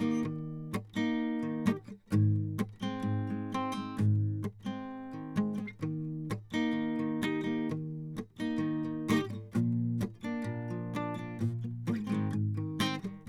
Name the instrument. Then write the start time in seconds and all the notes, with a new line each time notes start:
acoustic guitar
0.00 D#3 A#3 D#4
0.24 D#3
0.97 A#3 D#4
1.44 D#3
2.13 G#2 D#3
2.84 G#3 C4
3.04 G#2
3.29 G#3
3.54 C4 D#4
3.73 G#3 C4
4.00 G#2 D#3
4.65 G#3 C4
5.13 D#3
5.37 G#3 C4
5.60 G#3
5.84 D#3
6.55 A#3 D#4
6.73 D#3
7.01 D#3
7.23 A#3 D#4 G4
7.42 D#4
7.48 A#3
7.72 D#3
8.41 A#3 D#4
8.58 D#3 A#3
8.86 D#3
9.10 D#3 D#4
9.14 G4
9.56 A#2 F3
10.26 A#3 D4
10.44 A#2
10.72 F3
10.95 D4 F4
11.16 A#3 D4
11.40 A#2
11.65 A#3
12.08 D#3 G#3 C4
12.14 G#2
12.35 G#2
12.59 D#3
12.81 C4 D#4
13.01 D#3